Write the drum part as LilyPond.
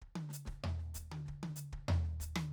\new DrumStaff \drummode { \time 4/4 \tempo 4 = 95 bd16 tommh16 <sn hhp>16 <sn bd>16 tomfh16 sn16 <sn hhp bd>16 tommh16 <sn bd>16 tommh16 <hhp sn>16 <sn bd>16 tomfh16 sn16 <sn bd hhp>16 <ss tommh>16 | }